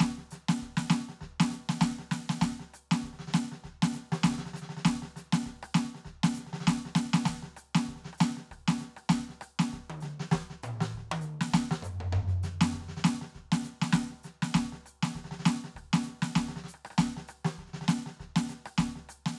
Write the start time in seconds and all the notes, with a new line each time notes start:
0.01 kick, snare
0.19 snare
0.32 snare, hi-hat pedal
0.50 snare
0.63 kick, snare
0.78 snare
0.91 snare, hi-hat pedal
1.10 snare
1.22 kick, snare
1.41 snare
1.45 cross-stick
1.52 snare, hi-hat pedal
1.70 snare
1.82 kick, snare
2.00 snare
2.12 snare, hi-hat pedal
2.30 snare
2.42 kick, snare
2.61 snare
2.75 cross-stick, hi-hat pedal
2.92 snare
3.05 kick, snare
3.14 snare
3.20 snare
3.28 snare
3.34 snare, hi-hat pedal
3.53 snare
3.65 kick, snare
3.83 snare
3.94 snare, hi-hat pedal
4.13 snare
4.24 kick, snare
4.31 snare
4.39 snare
4.47 snare
4.55 snare, hi-hat pedal
4.63 snare
4.70 snare
4.78 snare
4.86 kick, snare
5.03 snare
5.17 snare, hi-hat pedal
5.34 snare
5.47 kick, snare
5.64 cross-stick
5.76 snare, hi-hat pedal
5.96 snare
6.07 kick
6.24 snare
6.36 snare, hi-hat pedal
6.48 snare
6.54 snare
6.61 snare
6.68 kick, snare
6.86 snare
6.96 snare, hi-hat pedal
7.14 snare
7.27 kick, snare
7.44 snare
7.58 cross-stick, hi-hat pedal
7.76 snare
7.89 kick, snare
7.97 snare
8.02 snare
8.06 snare
8.14 cross-stick
8.19 snare, hi-hat pedal
8.38 snare
8.52 kick, cross-stick
8.69 snare
8.79 snare, hi-hat pedal
8.98 cross-stick
9.10 kick, snare
9.30 snare
9.42 cross-stick, hi-hat pedal
9.60 snare
9.74 kick, snare
9.91 high tom
10.02 snare, hi-hat pedal
10.21 snare
10.32 kick, snare
10.51 snare
10.64 hi-hat pedal, mid tom
10.82 snare
10.95 kick, snare
11.13 high tom
11.22 snare, hi-hat pedal
11.42 snare
11.54 kick, snare
11.72 snare
11.83 floor tom, hi-hat pedal
12.01 floor tom
12.14 kick, floor tom
12.29 snare
12.44 snare, hi-hat pedal
12.62 snare
12.74 kick, snare
12.81 snare
12.87 snare
12.89 snare
12.98 snare
13.05 snare, hi-hat pedal
13.22 snare
13.36 kick, snare
13.53 snare
13.58 cross-stick
13.65 snare, hi-hat pedal
13.83 snare
13.94 kick, snare
14.10 snare
14.24 snare, hi-hat pedal
14.43 snare
14.55 kick, snare
14.73 snare
14.87 cross-stick, hi-hat pedal
15.04 snare
15.16 kick, snare
15.25 snare
15.32 snare
15.40 snare
15.46 snare, hi-hat pedal
15.65 snare
15.77 kick, cross-stick
15.94 snare
16.03 hi-hat pedal
16.08 snare
16.23 snare
16.36 kick, snare
16.49 snare
16.57 snare
16.65 snare
16.69 hi-hat pedal
16.75 cross-stick
16.86 cross-stick
16.91 cross-stick
16.94 cross-stick
16.99 kick, snare
17.18 snare
17.29 cross-stick, hi-hat pedal
17.46 snare
17.59 kick, snare
17.67 snare
17.73 snare
17.82 snare
17.89 snare, hi-hat pedal
18.07 snare
18.21 kick, snare
18.37 snare
18.50 snare, hi-hat pedal
18.67 cross-stick
18.79 kick, snare
18.97 snare
19.10 cross-stick, hi-hat pedal
19.27 snare